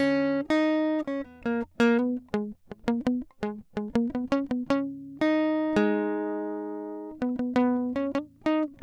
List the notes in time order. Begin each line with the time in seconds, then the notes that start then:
0.00 C#4
0.52 D#4
1.09 C#4
1.27 B3
1.47 A#3
1.81 A#3
2.35 G#3
2.73 G#3
2.89 A#3
3.08 B3
3.44 G#3
3.78 G#3
3.97 A#3
4.16 B3
4.33 C#4
4.52 B3
4.72 C#4
5.23 D#4
5.78 G#3
7.23 B3
7.41 B3
7.57 B3
7.97 C#4
8.16 D4
8.47 D#4